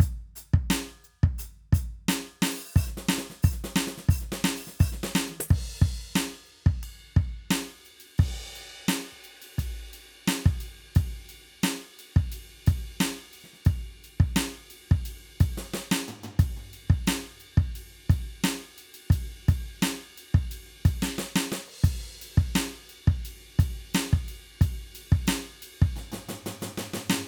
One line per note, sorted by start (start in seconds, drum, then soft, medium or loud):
0.01 closed hi-hat loud
0.01 kick loud
0.36 closed hi-hat loud
0.55 kick loud
0.71 closed hi-hat loud
0.71 snare loud
0.86 hi-hat pedal soft
1.05 closed hi-hat medium
1.24 kick loud
1.39 closed hi-hat loud
1.74 closed hi-hat loud
1.74 kick loud
2.09 closed hi-hat loud
2.09 snare loud
2.43 open hi-hat loud
2.43 snare loud
2.77 open hi-hat loud
2.77 kick loud
2.88 snare soft
3.10 snare loud
3.19 snare medium
3.31 snare medium
3.43 open hi-hat loud
3.43 kick loud
3.53 snare soft
3.65 snare loud
3.77 snare loud
3.88 snare medium
3.99 snare medium
4.10 open hi-hat loud
4.10 kick loud
4.22 snare soft
4.33 snare loud
4.45 snare loud
4.56 open hi-hat loud
4.68 snare medium
4.80 open hi-hat loud
4.80 kick loud
4.93 snare medium
5.04 snare loud
5.16 snare loud
5.16 hi-hat pedal soft
5.28 high tom loud
5.41 high tom loud
5.51 kick loud
5.51 crash loud
5.83 kick loud
6.16 snare loud
6.16 ride medium
6.47 ride soft
6.67 kick loud
6.84 ride bell loud
7.17 kick loud
7.52 snare loud
7.52 ride loud
7.86 ride medium
8.01 ride medium
8.19 kick loud
8.19 ride loud
8.56 ride medium
8.89 snare loud
8.89 ride loud
9.13 kick soft
9.25 ride medium
9.43 ride loud
9.59 kick medium
9.59 ride loud
9.94 ride loud
10.29 snare loud
10.29 ride loud
10.47 kick loud
10.61 ride loud
10.96 kick loud
10.96 ride loud
11.30 ride loud
11.64 snare loud
11.64 ride loud
12.00 ride loud
12.17 kick loud
12.33 ride loud
12.67 kick loud
12.67 ride loud
13.01 snare loud
13.01 ride loud
13.34 ride medium
13.41 snare soft
13.41 ride soft
13.54 snare soft
13.66 kick loud
13.66 ride loud
14.05 ride medium
14.21 kick loud
14.37 snare loud
14.37 ride loud
14.71 ride loud
14.92 kick loud
15.06 ride loud
15.41 kick loud
15.41 ride loud
15.58 snare medium
15.75 snare loud
15.92 snare loud
16.09 floor tom loud
16.24 floor tom loud
16.40 kick loud
16.40 ride loud
16.57 floor tom medium
16.74 ride medium
16.91 kick loud
16.91 snare soft
17.08 snare loud
17.08 ride loud
17.41 ride medium
17.58 kick loud
17.58 snare soft
17.76 ride loud
18.11 kick loud
18.11 ride loud
18.45 snare loud
18.45 ride loud
18.79 ride loud
18.95 ride loud
19.11 kick loud
19.11 ride loud
19.49 kick loud
19.49 ride loud
19.83 snare loud
19.83 ride loud
20.18 ride loud
20.35 kick loud
20.35 snare soft
20.52 ride loud
20.86 kick loud
20.86 ride loud
21.03 snare loud
21.19 snare loud
21.37 snare loud
21.53 snare loud
21.68 crash loud
21.85 kick loud
21.85 ride loud
22.22 ride loud
22.38 kick loud
22.56 snare loud
22.56 ride loud
22.90 ride medium
23.08 kick loud
23.26 ride loud
23.60 kick loud
23.60 ride loud
23.95 snare loud
23.95 ride loud
24.14 kick loud
24.29 ride loud
24.62 kick loud
24.62 ride loud
24.96 ride loud
25.13 kick loud
25.28 snare loud
25.28 ride loud
25.63 ride loud
25.83 kick loud
25.97 snare medium
25.97 floor tom medium
26.13 snare medium
26.13 floor tom loud
26.30 snare loud
26.30 floor tom loud
26.47 snare loud
26.47 floor tom loud
26.62 snare loud
26.62 floor tom loud
26.62 hi-hat pedal medium
26.78 snare loud
26.78 floor tom loud
26.83 hi-hat pedal medium
26.94 snare loud
26.94 floor tom loud
27.07 hi-hat pedal soft
27.11 snare loud
27.11 floor tom loud